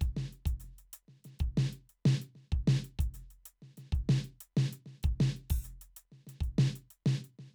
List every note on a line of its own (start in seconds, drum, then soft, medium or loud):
0.01 kick medium
0.01 closed hi-hat soft
0.17 snare medium
0.32 closed hi-hat soft
0.46 open hi-hat medium
0.46 kick medium
0.60 hi-hat pedal medium
0.64 snare soft
0.78 closed hi-hat soft
0.93 closed hi-hat medium
1.08 snare soft
1.24 snare soft
1.24 closed hi-hat soft
1.39 kick medium
1.39 closed hi-hat soft
1.57 snare loud
1.73 closed hi-hat soft
1.89 closed hi-hat soft
2.05 snare loud
2.22 closed hi-hat soft
2.35 snare soft
2.52 kick medium
2.52 closed hi-hat soft
2.67 snare loud
2.84 closed hi-hat soft
2.99 kick medium
2.99 open hi-hat medium
3.14 snare soft
3.14 hi-hat pedal medium
3.30 closed hi-hat soft
3.46 closed hi-hat medium
3.62 snare soft
3.77 snare soft
3.77 closed hi-hat soft
3.92 kick medium
3.92 closed hi-hat soft
4.09 snare loud
4.24 closed hi-hat soft
4.41 closed hi-hat medium
4.57 snare loud
4.73 closed hi-hat medium
4.86 snare soft
5.03 kick medium
5.03 closed hi-hat soft
5.20 snare loud
5.36 closed hi-hat soft
5.40 snare soft
5.50 open hi-hat medium
5.50 kick medium
5.64 hi-hat pedal loud
5.81 closed hi-hat medium
5.96 closed hi-hat medium
6.12 snare soft
6.27 snare soft
6.27 closed hi-hat soft
6.41 kick soft
6.41 closed hi-hat soft
6.58 snare loud
6.76 closed hi-hat soft
6.90 closed hi-hat soft
7.06 snare loud
7.24 closed hi-hat soft
7.39 snare soft